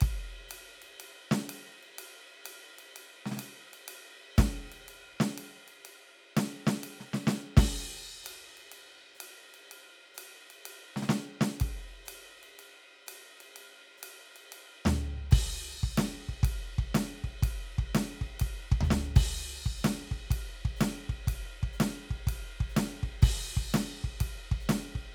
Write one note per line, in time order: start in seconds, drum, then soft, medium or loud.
0.01 kick loud
0.01 ride loud
0.49 hi-hat pedal medium
0.49 ride loud
0.82 ride medium
1.00 ride loud
1.31 snare loud
1.37 hi-hat pedal medium
1.49 ride loud
1.83 ride soft
1.99 ride loud
2.45 hi-hat pedal medium
2.45 ride loud
2.79 ride medium
2.96 ride loud
3.26 snare medium
3.31 snare medium
3.36 snare medium
3.36 hi-hat pedal soft
3.36 ride loud
3.73 ride medium
3.88 ride loud
4.36 kick loud
4.36 snare loud
4.36 hi-hat pedal soft
4.36 ride loud
4.72 ride medium
4.88 ride medium
5.20 snare loud
5.38 ride loud
5.68 ride medium
5.85 ride loud
6.37 snare loud
6.37 ride loud
6.67 snare loud
6.84 ride loud
7.00 snare soft
7.14 snare medium
7.27 snare loud
7.57 kick loud
7.57 snare loud
7.57 hi-hat pedal soft
7.57 crash loud
8.24 hi-hat pedal medium
8.24 ride loud
8.57 ride medium
8.72 ride medium
9.15 hi-hat pedal soft
9.21 ride loud
9.54 ride medium
9.71 ride medium
10.15 hi-hat pedal soft
10.15 ride loud
10.50 ride medium
10.66 ride loud
10.96 snare medium
11.01 snare medium
11.01 hi-hat pedal soft
11.08 snare soft
11.08 snare loud
11.41 snare loud
11.60 kick medium
11.60 ride loud
12.06 hi-hat pedal medium
12.06 ride loud
12.43 ride medium
12.59 ride medium
13.07 hi-hat pedal soft
13.07 ride loud
13.41 ride medium
13.56 ride medium
13.98 hi-hat pedal soft
14.03 ride loud
14.36 ride medium
14.52 ride loud
14.85 snare loud
14.85 floor tom loud
15.18 kick soft
15.30 kick loud
15.30 cross-stick soft
15.30 crash loud
15.83 kick medium
15.91 hi-hat pedal soft
15.98 snare loud
15.98 ride loud
16.29 kick soft
16.43 kick loud
16.43 ride loud
16.79 kick medium
16.95 snare loud
16.95 ride loud
17.24 kick medium
17.43 kick medium
17.43 ride loud
17.79 kick medium
17.95 snare loud
17.95 ride loud
18.21 kick medium
18.40 kick medium
18.40 ride loud
18.72 kick medium
18.81 floor tom loud
18.81 hi-hat pedal medium
18.91 snare loud
19.16 kick loud
19.16 crash loud
19.66 kick medium
19.78 hi-hat pedal medium
19.84 snare loud
19.84 ride loud
20.11 kick medium
20.31 kick medium
20.31 ride loud
20.65 kick medium
20.77 hi-hat pedal soft
20.81 snare loud
20.81 ride loud
21.09 kick medium
21.28 kick medium
21.28 ride loud
21.63 kick medium
21.73 hi-hat pedal soft
21.80 snare loud
21.80 ride loud
22.11 kick medium
22.27 kick medium
22.27 ride loud
22.60 kick medium
22.70 hi-hat pedal soft
22.77 snare loud
22.77 ride loud
23.03 kick medium
23.22 kick loud
23.22 crash loud
23.57 kick medium
23.65 hi-hat pedal soft
23.74 snare loud
23.74 ride loud
24.04 kick medium
24.21 kick medium
24.21 ride loud
24.52 kick medium
24.61 hi-hat pedal soft
24.69 snare loud
24.69 ride loud
24.95 kick medium